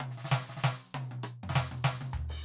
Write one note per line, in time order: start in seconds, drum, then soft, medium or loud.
0.00 high tom loud
0.11 snare soft
0.17 snare medium
0.24 snare medium
0.31 snare loud
0.43 snare soft
0.49 snare medium
0.57 snare medium
0.64 snare loud
0.94 high tom loud
1.11 high tom medium
1.23 cross-stick medium
1.43 mid tom loud
1.49 snare medium
1.55 snare loud
1.71 high tom loud
1.84 snare loud
2.01 high tom loud
2.13 floor tom loud
2.29 crash medium
2.35 hi-hat pedal medium